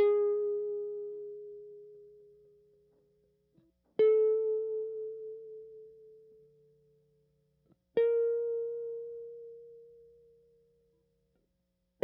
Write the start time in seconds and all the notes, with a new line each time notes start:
0.00 G#4
4.00 A4
7.98 A#4